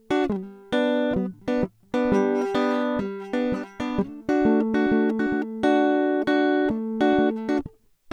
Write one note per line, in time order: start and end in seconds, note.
0.12 0.31 D4
0.12 0.32 F#4
0.31 1.13 G3
0.74 1.32 B3
0.74 1.20 D4
1.18 1.36 F#3
1.49 1.69 B3
1.49 1.71 D4
1.95 2.50 B3
1.95 2.49 D4
2.13 2.85 G3
2.56 3.02 B3
2.56 3.07 D4
3.01 3.49 G3
3.35 3.69 B3
3.35 3.70 D4
3.54 3.65 G3
3.81 4.03 B3
3.81 4.05 D4
4.00 4.31 A3
4.30 4.67 D4
4.30 4.67 F#4
4.47 4.90 A3
4.76 5.16 D4
4.76 5.15 F#4
4.93 5.30 A3
5.21 5.49 D4
5.21 5.48 F#4
5.34 6.67 A3
5.64 6.27 D4
5.64 6.27 F#4
6.28 6.74 D4
6.28 6.75 F#4
6.72 7.17 A3
7.02 7.36 D4
7.02 7.38 F#4
7.20 7.62 A3
7.50 7.65 D4
7.50 7.66 F#4